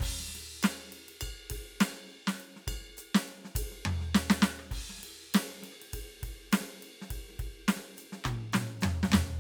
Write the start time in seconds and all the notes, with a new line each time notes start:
0.01 kick, crash
0.09 kick
0.20 snare
0.28 snare
0.35 snare, ride
0.63 snare, hi-hat pedal, ride bell
0.89 snare, ride
0.98 snare
1.03 snare
1.08 snare, ride
1.20 kick, hi-hat pedal, ride bell
1.50 kick, ride
1.81 snare, hi-hat pedal, ride bell
1.93 snare
2.08 hi-hat pedal, ride
2.28 snare
2.36 hi-hat pedal
2.40 ride
2.57 snare
2.68 kick, snare, ride bell
2.74 kick
2.77 kick, snare
2.89 snare
2.98 hi-hat pedal, ride
3.15 snare
3.23 hi-hat pedal
3.28 ride
3.45 snare
3.56 kick, hi-hat pedal, ride
3.72 snare
3.86 floor tom
4.01 snare
4.15 snare
4.30 snare
4.43 snare
4.60 cross-stick
4.71 kick, crash
4.78 kick
4.81 kick
4.90 snare
4.99 snare
5.04 ride
5.34 snare, hi-hat pedal, ride
5.63 snare, ride
5.73 cross-stick
5.82 ride
5.93 kick, hi-hat pedal, ride
6.20 kick, snare, ride
6.32 kick
6.52 snare, hi-hat pedal, ride
6.61 snare
6.83 ride
7.02 snare
7.11 kick, ride
7.17 kick
7.29 snare
7.34 snare
7.40 kick, ride
7.46 kick
7.69 snare, hi-hat pedal, ride
7.77 snare
7.98 hi-hat pedal, ride
8.13 snare
8.25 kick, cross-stick, hi-hat pedal, mid tom
8.31 kick
8.53 snare, hi-hat pedal, mid tom
8.81 snare, hi-hat pedal, floor tom
9.03 snare, floor tom
9.12 snare, hi-hat pedal, floor tom